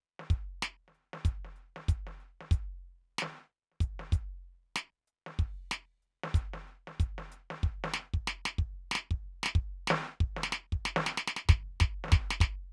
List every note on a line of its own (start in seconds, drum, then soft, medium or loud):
0.20 snare soft
0.30 closed hi-hat soft
0.30 kick medium
0.63 closed hi-hat medium
0.63 snare loud
0.88 snare soft
0.95 closed hi-hat soft
1.14 snare soft
1.25 closed hi-hat medium
1.25 kick medium
1.45 snare soft
1.56 closed hi-hat soft
1.76 snare soft
1.89 closed hi-hat medium
1.89 kick medium
2.07 snare soft
2.20 closed hi-hat soft
2.41 snare soft
2.51 closed hi-hat medium
2.51 kick medium
3.19 closed hi-hat medium
3.19 snare loud
3.22 snare medium
3.72 snare soft
3.81 closed hi-hat medium
3.81 kick medium
4.00 snare soft
4.13 closed hi-hat medium
4.13 kick medium
4.76 closed hi-hat loud
4.76 snare loud
5.08 closed hi-hat soft
5.27 snare soft
5.39 kick medium
5.39 closed hi-hat soft
5.43 crash soft
5.71 closed hi-hat loud
5.71 snare loud
6.02 closed hi-hat soft
6.24 snare medium
6.35 closed hi-hat medium
6.35 kick medium
6.54 snare soft
6.68 closed hi-hat soft
6.88 snare soft
7.00 closed hi-hat medium
7.00 kick medium
7.18 snare soft
7.32 closed hi-hat medium
7.51 snare medium
7.63 kick medium
7.84 snare medium
7.94 snare loud
8.14 kick medium
8.28 snare loud
8.46 snare loud
8.59 kick medium
8.91 snare loud
8.95 snare loud
9.11 kick medium
9.43 snare loud
9.46 snare loud
9.55 kick medium
9.88 snare loud
9.91 snare loud
10.21 kick medium
10.37 snare medium
10.44 snare loud
10.53 snare loud
10.72 kick medium
10.86 snare loud
10.96 snare loud
11.07 snare loud
11.18 snare loud
11.28 snare loud
11.37 snare loud
11.45 kick soft
11.45 snare loud
11.49 kick loud
11.80 kick medium
11.80 snare loud
12.04 snare medium
12.09 snare soft
12.12 kick loud
12.12 snare loud
12.31 snare loud
12.41 kick medium
12.41 snare loud